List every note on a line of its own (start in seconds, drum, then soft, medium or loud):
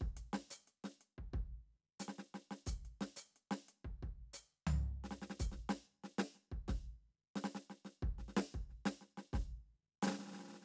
0.01 kick medium
0.17 closed hi-hat soft
0.33 snare medium
0.50 hi-hat pedal medium
0.68 closed hi-hat soft
0.84 snare soft
1.01 closed hi-hat soft
1.18 kick soft
1.34 kick medium
2.00 snare soft
2.00 hi-hat pedal medium
2.08 snare soft
2.18 snare soft
2.34 snare soft
2.51 snare soft
2.66 kick soft
2.66 hi-hat pedal medium
2.85 closed hi-hat soft
3.01 snare medium
3.16 hi-hat pedal medium
3.36 closed hi-hat soft
3.51 snare medium
3.68 closed hi-hat soft
3.85 kick soft
4.03 kick soft
4.33 hi-hat pedal medium
4.67 floor tom medium
5.04 snare soft
5.11 snare soft
5.22 snare soft
5.30 snare soft
5.40 kick medium
5.40 hi-hat pedal medium
5.52 snare soft
5.69 snare medium
6.04 snare soft
6.18 snare medium
6.35 snare soft
6.52 kick soft
6.68 kick medium
6.68 snare soft
7.36 snare medium
7.44 snare medium
7.55 snare soft
7.70 snare soft
7.85 snare soft
8.03 kick medium
8.18 snare soft
8.28 snare soft
8.37 snare medium
8.54 kick soft
8.70 snare soft
8.86 snare medium
9.01 snare soft
9.18 snare soft
9.33 kick medium
9.33 snare soft
10.02 snare medium
10.02 hi-hat pedal medium
10.07 snare medium
10.10 snare medium
10.13 snare soft
10.19 snare soft
10.22 snare soft
10.25 snare soft
10.27 snare soft
10.31 snare soft
10.34 snare soft
10.36 snare soft
10.39 snare soft
10.44 snare soft
10.47 snare soft
10.49 snare soft
10.52 snare soft
10.54 snare soft
10.59 snare soft
10.62 snare soft